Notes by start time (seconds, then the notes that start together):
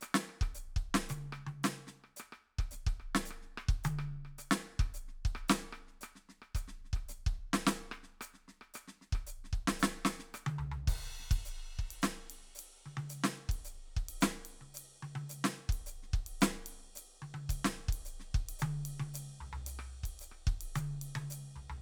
0.01 cross-stick, hi-hat pedal
0.14 snare
0.29 cross-stick
0.41 kick, cross-stick
0.55 hi-hat pedal
0.76 kick
0.94 snare
1.09 hi-hat pedal, high tom
1.32 cross-stick
1.47 high tom
1.64 snare, hi-hat pedal
1.87 snare
2.04 cross-stick
2.16 cross-stick, hi-hat pedal
2.32 cross-stick
2.59 kick, cross-stick
2.71 snare, hi-hat pedal
2.87 kick, cross-stick
3.00 cross-stick
3.15 snare
3.25 hi-hat pedal
3.31 cross-stick
3.42 snare
3.58 cross-stick
3.69 kick
3.84 hi-hat pedal, high tom
3.99 cross-stick
4.25 cross-stick
4.38 cross-stick, hi-hat pedal
4.51 snare
4.79 kick, cross-stick
4.94 hi-hat pedal
5.08 snare
5.25 kick
5.35 cross-stick
5.49 snare, hi-hat pedal
5.73 cross-stick
5.87 snare
6.01 cross-stick, hi-hat pedal
6.15 snare
6.29 snare
6.42 cross-stick
6.55 kick, cross-stick, hi-hat pedal
6.68 snare
6.85 snare
6.93 kick, cross-stick
7.09 snare, hi-hat pedal
7.26 kick
7.33 snare
7.53 snare
7.67 snare, hi-hat pedal
7.92 cross-stick
8.03 snare
8.21 cross-stick, hi-hat pedal
8.34 snare
8.48 snare
8.61 cross-stick
8.74 cross-stick, hi-hat pedal
8.88 snare
9.01 snare
9.12 kick, cross-stick
9.27 hi-hat pedal
9.44 snare
9.53 kick
9.67 snare
9.80 snare, hi-hat pedal
10.05 snare
10.19 snare
10.34 cross-stick, hi-hat pedal
10.46 high tom
10.59 floor tom
10.72 floor tom
10.87 kick, hi-hat pedal, crash
11.20 snare
11.31 kick, ride
11.45 hi-hat pedal
11.65 snare
11.79 kick
11.91 ride
12.02 snare, hi-hat pedal
12.30 ride
12.42 snare
12.55 hi-hat pedal
12.59 ride
12.86 high tom
12.97 high tom
13.10 hi-hat pedal, ride
13.24 snare
13.49 kick, ride
13.65 hi-hat pedal
13.87 snare
13.97 kick
14.09 ride
14.21 snare, hi-hat pedal
14.45 ride
14.61 high tom
14.74 hi-hat pedal, ride
15.03 high tom
15.15 high tom
15.29 hi-hat pedal, ride
15.44 snare
15.69 kick, ride
15.86 hi-hat pedal
16.03 snare
16.13 kick
16.26 ride
16.41 snare, hi-hat pedal
16.66 ride
16.95 hi-hat pedal, ride
17.22 high tom
17.34 high tom
17.49 kick, hi-hat pedal, ride
17.65 snare
17.89 kick
17.93 ride
18.05 hi-hat pedal, ride
18.20 snare
18.34 kick
18.49 ride
18.59 hi-hat pedal, high tom
18.85 ride
19.00 high tom
19.14 hi-hat pedal, ride
19.41 floor tom
19.53 floor tom
19.66 hi-hat pedal, ride
19.79 cross-stick
20.04 kick, ride
20.19 hi-hat pedal, ride
20.32 cross-stick
20.47 kick
20.61 ride
20.75 hi-hat pedal, high tom
21.02 ride
21.15 high tom
21.30 hi-hat pedal, ride
21.56 floor tom
21.70 floor tom